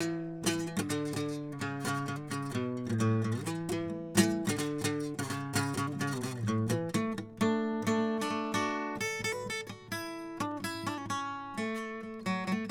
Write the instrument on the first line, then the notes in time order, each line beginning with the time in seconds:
acoustic guitar
0.01 E3
0.45 E3
0.78 D3
0.91 D3
1.18 D3
1.63 C#3
1.82 C#3
2.10 D3
2.33 C#3
2.56 B2
2.91 A2
3.01 A2
3.48 E3
3.70 E3
4.17 E3
4.50 D3
4.61 D3
4.86 D3
5.20 C#3
5.54 C#3
5.79 D3
6.02 C#3
6.14 B2
6.49 A2
6.72 E3
6.95 A3
7.13 A3
7.42 A3 D4
7.88 A3 D4
8.21 A3 D4
8.32 A3
8.55 D4 F#4
9.02 A4
9.26 A4
9.33 F#4 B4
9.51 A4
9.68 F#4
9.93 E4
10.41 D4
10.58 C#4
10.65 E4
10.87 D4
11.11 C#4
11.59 A3
12.02 A3
12.27 F#3
12.49 A3